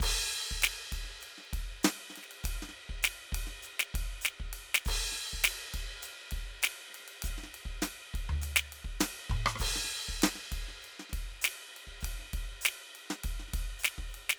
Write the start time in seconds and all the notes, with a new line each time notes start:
0.01 kick, hi-hat pedal, crash
0.12 kick
0.14 kick
0.52 kick
0.63 snare, hi-hat pedal, ride
0.93 kick, ride
0.98 kick
1.05 snare
1.21 hi-hat pedal, ride
1.39 snare
1.45 snare
1.51 kick, snare, ride
1.60 kick
1.84 snare, hi-hat pedal, ride
2.11 snare, hi-hat pedal
2.16 snare, ride
2.23 snare
2.32 ride
2.44 kick, hi-hat pedal, ride
2.50 kick
2.55 kick
2.63 snare
2.69 snare
2.77 ride
2.90 kick
3.03 snare, hi-hat pedal, ride
3.33 kick, ride
3.44 kick, snare
3.63 hi-hat pedal, ride
3.80 snare
3.95 kick, ride
4.02 kick
4.22 snare, hi-hat pedal
4.41 kick
4.46 kick
4.54 ride
4.75 snare
4.86 kick, hi-hat pedal, crash
4.94 kick
4.98 kick
5.13 snare
5.34 kick
5.45 snare, hi-hat pedal, ride
5.75 kick, ride
5.80 kick
5.90 snare
5.93 snare
6.03 hi-hat pedal, ride
6.32 kick, ride
6.39 kick
6.63 snare, hi-hat pedal, ride
6.91 snare
6.95 ride
7.00 snare
7.08 ride
7.23 kick, hi-hat pedal, ride
7.30 kick
7.38 snare
7.44 snare
7.48 snare
7.55 ride
7.66 kick
7.82 snare, hi-hat pedal, ride
8.15 kick, ride
8.21 kick
8.30 floor tom
8.42 hi-hat pedal, ride
8.57 snare
8.73 ride
8.85 kick
9.01 snare, hi-hat pedal, ride
9.30 kick, mid tom
9.46 cross-stick
9.56 cross-stick, hi-hat pedal
9.61 kick, crash
9.67 kick
9.76 snare
9.85 snare
10.09 kick
10.23 snare, hi-hat pedal, ride
10.36 snare
10.52 kick, ride
10.58 kick
10.69 snare
10.83 hi-hat pedal, ride
11.00 snare
11.10 kick, snare, ride
11.20 kick
11.42 snare, hi-hat pedal, ride
11.77 ride
11.88 kick, snare
12.01 kick, snare, hi-hat pedal, ride
12.14 kick
12.20 snare
12.23 snare
12.26 snare
12.34 kick, ride
12.40 kick
12.62 snare, hi-hat pedal, ride
12.96 ride
13.11 snare
13.24 kick, hi-hat pedal, ride
13.32 kick
13.40 snare
13.49 snare
13.54 kick, ride
13.61 kick
13.80 hi-hat pedal
13.84 snare, ride
13.98 kick, snare
14.04 kick
14.10 hi-hat pedal
14.15 ride
14.30 snare